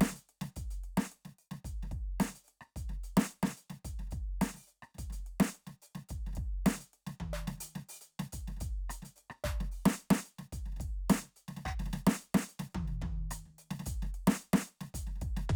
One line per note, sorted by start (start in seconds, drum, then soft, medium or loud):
0.01 closed hi-hat medium
0.01 snare loud
0.12 closed hi-hat medium
0.12 snare soft
0.29 closed hi-hat soft
0.42 snare medium
0.56 closed hi-hat medium
0.56 kick soft
0.63 kick soft
0.71 closed hi-hat medium
0.84 closed hi-hat soft
0.98 snare loud
1.12 closed hi-hat soft
1.25 snare soft
1.39 open hi-hat soft
1.52 snare soft
1.65 closed hi-hat medium
1.65 kick soft
1.83 snare soft
1.92 kick soft
1.92 snare soft
1.92 closed hi-hat soft
2.20 closed hi-hat loud
2.20 snare loud
2.31 snare soft
2.35 open hi-hat medium
2.44 hi-hat pedal soft
2.48 closed hi-hat soft
2.61 cross-stick medium
2.76 closed hi-hat medium
2.76 kick soft
2.82 kick soft
2.90 snare soft
2.95 snare soft
3.04 closed hi-hat soft
3.17 snare loud
3.31 closed hi-hat soft
3.43 snare medium
3.47 snare medium
3.57 closed hi-hat medium
3.70 snare soft
3.85 closed hi-hat medium
3.85 kick soft
3.91 kick soft
3.99 snare soft
4.07 closed hi-hat medium
4.07 snare soft
4.13 kick soft
4.21 kick soft
4.42 closed hi-hat medium
4.42 snare medium
4.54 open hi-hat medium
4.54 snare soft
4.67 closed hi-hat soft
4.67 hi-hat pedal soft
4.83 cross-stick medium
4.95 closed hi-hat medium
4.95 kick soft
4.95 snare soft
5.04 kick soft
5.10 closed hi-hat medium
5.10 snare soft
5.15 snare soft
5.19 snare soft
5.27 closed hi-hat soft
5.40 snare loud
5.55 closed hi-hat soft
5.67 snare soft
5.82 open hi-hat medium
5.82 hi-hat pedal medium
5.95 snare soft
6.09 closed hi-hat medium
6.09 kick soft
6.17 kick soft
6.27 snare soft
6.33 snare soft
6.33 closed hi-hat medium
6.37 kick soft
6.46 kick soft
6.66 closed hi-hat loud
6.66 snare loud
6.77 closed hi-hat medium
6.77 snare soft
6.94 closed hi-hat soft
7.07 snare medium
7.20 kick soft
7.20 high tom medium
7.34 percussion loud
7.48 snare medium
7.61 closed hi-hat loud
7.76 snare soft
7.89 open hi-hat loud
8.01 closed hi-hat medium
8.20 snare medium
8.33 closed hi-hat medium
8.33 kick soft
8.39 kick soft
8.48 snare soft
8.57 closed hi-hat medium
8.57 snare soft
8.61 kick soft
8.71 kick soft
8.90 closed hi-hat loud
8.90 cross-stick medium
9.02 open hi-hat medium
9.02 snare soft
9.16 closed hi-hat soft
9.16 hi-hat pedal soft
9.30 cross-stick medium
9.44 kick soft
9.44 percussion loud
9.51 kick soft
9.61 snare soft
9.72 open hi-hat soft
9.86 snare loud
9.99 closed hi-hat soft
10.11 snare loud
10.25 closed hi-hat medium
10.39 snare soft
10.53 closed hi-hat medium
10.53 kick soft
10.59 kick soft
10.62 kick soft
10.66 snare soft
10.72 snare soft
10.77 kick soft
10.77 snare soft
10.81 closed hi-hat medium
10.89 kick soft
11.10 closed hi-hat loud
11.10 snare loud
11.22 snare soft
11.36 closed hi-hat soft
11.48 snare soft
11.57 snare soft
11.66 kick soft
11.66 percussion loud
11.72 kick soft
11.80 snare soft
11.86 snare soft
11.93 snare medium
12.07 snare loud
12.21 closed hi-hat medium
12.35 snare loud
12.49 closed hi-hat soft
12.60 snare medium
12.69 hi-hat pedal soft
12.75 kick soft
12.75 high tom loud
12.81 kick soft
12.85 kick soft
12.85 snare soft
13.02 kick soft
13.02 high tom loud
13.10 kick soft
13.31 closed hi-hat loud
13.31 cross-stick medium
13.46 snare soft
13.59 hi-hat pedal soft
13.59 open hi-hat medium
13.71 snare medium
13.80 snare soft
13.86 closed hi-hat loud
13.86 kick medium
13.93 kick soft
13.97 kick soft
14.03 snare soft
14.15 closed hi-hat soft
14.28 snare loud
14.41 closed hi-hat soft
14.54 snare loud
14.68 closed hi-hat soft
14.81 snare medium
14.95 closed hi-hat loud
14.95 kick soft
15.00 kick soft
15.07 snare soft
15.16 snare soft
15.22 kick medium
15.22 closed hi-hat medium
15.28 kick soft
15.37 snare medium
15.50 kick loud